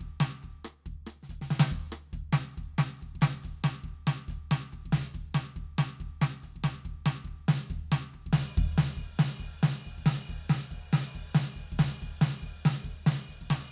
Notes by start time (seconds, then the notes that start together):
0.01 kick, snare, percussion
0.20 snare, percussion
0.42 kick, snare, percussion
0.65 cross-stick, percussion
0.86 kick, percussion
1.07 cross-stick, percussion
1.16 snare
1.23 snare
1.30 kick, percussion
1.42 snare
1.51 snare
1.60 snare
1.71 kick, snare, percussion
1.92 cross-stick, percussion
2.13 kick, percussion
2.33 snare, percussion
2.57 kick, snare, percussion
2.78 snare, percussion
3.02 kick, percussion
3.15 kick
3.22 snare, percussion
3.41 kick, snare, percussion
3.64 snare, percussion
3.84 kick, snare
3.88 percussion
4.07 snare, percussion
4.28 kick, snare, percussion
4.51 snare, percussion
4.72 kick, snare, percussion
4.86 kick
4.93 snare, percussion
5.12 kick, snare, percussion
5.35 snare, percussion
5.56 kick, snare, percussion
5.79 snare, percussion
5.99 kick, snare, percussion
6.22 snare, percussion
6.44 kick, percussion
6.56 kick
6.64 snare, percussion
6.85 kick, percussion
7.06 snare, percussion
7.25 kick, percussion
7.49 snare, percussion
7.70 kick, snare, percussion
7.92 snare, percussion
8.14 kick, percussion
8.27 kick
8.33 snare, percussion
8.57 kick, percussion
8.78 snare, percussion
8.97 kick, percussion
9.19 snare, percussion
9.40 kick, percussion
9.63 snare, percussion
9.85 kick, snare, percussion
9.98 kick
10.06 snare, percussion
10.29 kick, percussion
10.50 snare, percussion
10.71 kick, percussion
10.93 snare, percussion
11.15 kick, percussion
11.35 snare, percussion
11.49 snare
11.56 kick, percussion
11.72 kick
11.79 snare, percussion
11.93 snare
12.02 kick, percussion
12.22 snare, percussion
12.42 kick, snare, percussion
12.65 snare, percussion
12.84 kick, snare, percussion
13.07 snare, percussion
13.29 kick, percussion
13.41 kick
13.50 snare, percussion